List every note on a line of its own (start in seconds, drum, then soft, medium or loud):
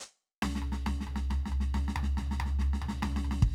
0.04 hi-hat pedal medium
0.42 snare loud
0.42 floor tom loud
0.55 snare medium
0.62 floor tom medium
0.72 snare medium
0.86 snare medium
0.86 floor tom loud
1.00 snare medium
1.07 floor tom medium
1.16 snare medium
1.30 snare medium
1.30 floor tom loud
1.46 snare medium
1.52 floor tom loud
1.60 snare medium
1.74 snare medium
1.74 floor tom loud
1.88 snare medium
1.96 floor tom loud
2.03 snare medium
2.17 snare medium
2.17 floor tom loud
2.31 snare medium
2.40 floor tom loud
2.45 snare medium
2.59 snare medium
2.59 floor tom loud
2.73 snare medium
2.77 snare soft
2.82 floor tom loud
2.88 snare medium
3.02 snare medium
3.02 floor tom loud
3.16 snare medium
3.24 floor tom loud
3.31 snare medium
3.42 kick loud
3.42 crash medium